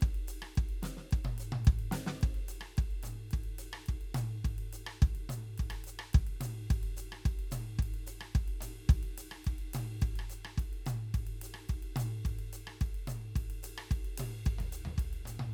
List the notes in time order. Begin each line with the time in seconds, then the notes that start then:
0.01 kick, ride
0.12 snare, ride
0.28 hi-hat pedal, ride
0.42 cross-stick
0.56 kick, ride
0.69 ride
0.83 snare, hi-hat pedal, ride
0.97 snare
1.11 kick, ride
1.25 high tom, ride
1.38 hi-hat pedal, ride
1.52 high tom
1.65 kick, ride
1.79 ride
1.91 snare, hi-hat pedal, ride
2.07 snare
2.21 kick, ride
2.34 ride
2.48 hi-hat pedal, ride
2.61 cross-stick
2.77 kick, ride
2.91 ride
3.03 hi-hat pedal, high tom, ride
3.31 kick, ride
3.44 ride
3.58 hi-hat pedal, ride
3.73 cross-stick
3.86 kick, ride
4.01 ride
4.15 hi-hat pedal, high tom, ride
4.45 kick, ride
4.58 ride
4.73 hi-hat pedal, ride
4.87 cross-stick
5.02 kick, ride
5.15 ride
5.29 hi-hat pedal, high tom, ride
5.58 kick, ride
5.70 cross-stick, ride
5.84 hi-hat pedal, ride
5.99 cross-stick
6.13 kick, ride
6.27 ride
6.41 hi-hat pedal, high tom, ride
6.70 kick, ride
6.83 ride
6.97 hi-hat pedal, ride
7.12 cross-stick
7.25 kick, ride
7.39 ride
7.51 hi-hat pedal, high tom, ride
7.79 kick, ride
7.94 ride
8.07 hi-hat pedal, ride
8.21 cross-stick
8.35 kick, ride
8.48 ride
8.61 hi-hat pedal, high tom, ride
8.89 kick, ride
9.03 ride
9.18 hi-hat pedal, ride
9.31 cross-stick
9.45 kick, ride
9.58 ride
9.74 hi-hat pedal, high tom, ride
10.02 kick, ride
10.16 cross-stick, ride
10.30 hi-hat pedal, ride
10.45 cross-stick
10.58 kick, ride
10.73 ride
10.86 hi-hat pedal, high tom, ride
11.14 kick, ride
11.27 ride
11.42 hi-hat pedal, ride
11.54 cross-stick
11.69 kick, ride
11.83 ride
11.96 hi-hat pedal, high tom, ride
12.25 kick, ride
12.39 ride
12.53 hi-hat pedal, ride
12.67 cross-stick
12.81 kick, ride
12.95 ride
13.08 hi-hat pedal, high tom, ride
13.36 kick, ride
13.50 ride
13.56 kick
13.63 hi-hat pedal, ride
13.78 cross-stick
13.91 kick, ride
14.05 ride
14.18 hi-hat pedal, high tom, ride
14.46 kick, ride
14.59 floor tom, ride
14.72 hi-hat pedal, ride
14.85 floor tom
14.98 kick, ride
15.13 ride
15.25 hi-hat pedal, high tom, ride
15.39 high tom